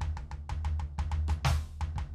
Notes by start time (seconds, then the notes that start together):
0.01 kick, floor tom
0.17 floor tom
0.32 floor tom
0.49 kick, floor tom
0.65 floor tom
0.80 floor tom
0.98 kick, floor tom
1.12 floor tom
1.28 cross-stick, floor tom
1.45 snare, floor tom
1.51 kick
1.81 floor tom
1.96 kick, floor tom